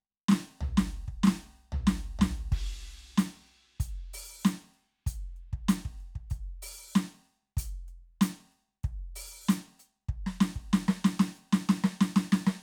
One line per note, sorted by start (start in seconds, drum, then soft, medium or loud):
0.29 snare loud
0.32 snare loud
0.61 floor tom loud
0.78 snare loud
1.08 kick medium
1.24 snare loud
1.28 snare loud
1.73 floor tom loud
1.87 snare loud
2.19 snare loud
2.19 floor tom loud
2.52 kick medium
2.52 ride loud
3.18 closed hi-hat loud
3.18 snare loud
3.80 closed hi-hat medium
3.80 kick medium
4.14 open hi-hat loud
4.45 closed hi-hat medium
4.45 snare loud
4.45 hi-hat pedal medium
4.74 closed hi-hat soft
5.07 closed hi-hat loud
5.07 kick medium
5.37 closed hi-hat soft
5.53 kick medium
5.69 closed hi-hat loud
5.69 snare loud
5.85 kick medium
6.01 closed hi-hat soft
6.16 kick soft
6.31 closed hi-hat medium
6.31 kick medium
6.63 open hi-hat loud
6.96 open hi-hat medium
6.96 snare loud
6.96 hi-hat pedal medium
7.57 closed hi-hat loud
7.57 kick medium
7.89 closed hi-hat soft
8.21 closed hi-hat loud
8.21 snare loud
8.53 closed hi-hat soft
8.84 kick medium
8.84 closed hi-hat soft
9.16 open hi-hat loud
9.49 open hi-hat loud
9.49 snare loud
9.49 hi-hat pedal soft
9.80 closed hi-hat soft
10.09 kick medium
10.27 snare medium
10.41 snare loud
10.56 kick medium
10.73 snare loud
10.89 snare loud
11.05 snare loud
11.20 snare loud
11.35 hi-hat pedal soft
11.53 snare loud
11.69 snare loud
11.84 snare loud
12.01 snare loud
12.16 snare loud
12.33 snare loud
12.47 snare loud